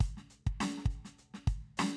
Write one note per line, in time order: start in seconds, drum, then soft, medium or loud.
0.00 closed hi-hat loud
0.00 kick medium
0.17 snare soft
0.30 closed hi-hat soft
0.47 kick soft
0.47 closed hi-hat soft
0.60 closed hi-hat loud
0.60 snare loud
0.77 snare soft
0.85 kick soft
0.90 closed hi-hat medium
1.05 closed hi-hat medium
1.05 snare soft
1.18 closed hi-hat soft
1.34 snare soft
1.47 open hi-hat medium
1.47 kick medium
1.77 closed hi-hat medium
1.77 snare loud
1.77 hi-hat pedal medium
1.84 snare soft